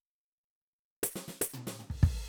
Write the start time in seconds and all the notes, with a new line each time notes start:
1.03 high tom
1.15 snare
1.28 snare
1.41 high tom
1.53 mid tom
1.67 snare
1.79 floor tom
1.90 kick, crash
2.03 kick, crash